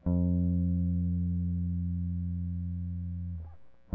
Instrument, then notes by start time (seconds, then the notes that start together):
electric guitar
0.09 F2